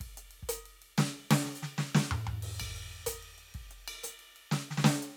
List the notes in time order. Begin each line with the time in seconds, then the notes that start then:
0.01 kick, cross-stick, floor tom, ride
0.18 closed hi-hat
0.31 ride
0.43 kick
0.49 closed hi-hat
0.66 ride
0.82 ride
0.98 snare, ride bell
1.31 snare, ride
1.46 snare
1.56 hi-hat pedal
1.63 snare
1.78 snare
1.95 snare
2.12 high tom
2.27 mid tom
2.43 crash
2.48 kick
2.60 kick, hi-hat pedal, ride bell
2.77 closed hi-hat
2.93 ride
3.07 closed hi-hat, kick
3.23 ride
3.38 closed hi-hat
3.55 kick, ride
3.71 closed hi-hat
3.88 ride bell
4.04 closed hi-hat
4.20 ride
4.37 ride
4.52 snare, ride bell
4.71 snare
4.78 snare
4.85 snare
5.03 closed hi-hat